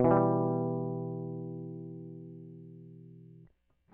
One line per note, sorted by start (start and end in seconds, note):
0.00 3.53 B2
0.05 3.48 E3
0.11 3.46 G3
0.17 0.23 C4